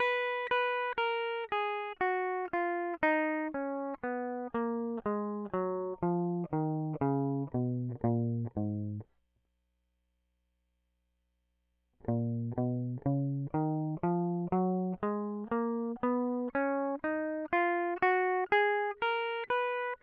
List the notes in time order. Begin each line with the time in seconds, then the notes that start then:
0.00 B4
0.51 B4
0.98 A#4
1.52 G#4
2.01 F#4
2.53 F4
3.03 D#4
3.54 C#4
4.04 B3
4.55 A#3
5.06 G#3
5.54 F#3
6.03 F3
6.54 D#3
7.02 C#3
7.56 B2
7.93 A#2
8.05 A#2
8.58 G#2
12.09 A#2
12.59 B2
13.07 C#3
13.55 D#3
14.04 F3
14.53 F#3
15.03 G#3
15.52 A#3
16.04 B3
16.55 C#4
17.04 D#4
17.53 F4
18.02 F#4
18.52 G#4
19.02 A#4
19.50 B4